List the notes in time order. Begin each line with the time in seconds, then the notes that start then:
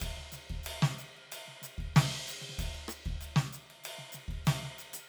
0.01 kick, ride, percussion
0.18 snare
0.32 snare, ride, percussion
0.50 kick, ride
0.64 ride, percussion
0.83 snare
0.99 ride, percussion
1.17 ride
1.32 ride, percussion
1.48 snare
1.62 snare, ride, percussion
1.79 kick, ride
1.96 snare, percussion, ride
2.28 ride, percussion
2.42 snare
2.50 snare
2.59 kick, ride, percussion
2.75 ride
2.89 cross-stick, percussion
3.06 kick, ride
3.21 ride, percussion
3.36 snare
3.53 ride, percussion
3.71 ride
3.84 ride, percussion
3.99 snare
4.13 snare, ride, percussion
4.29 kick, ride
4.46 snare, ride, percussion
4.63 snare
4.79 ride, percussion
4.94 percussion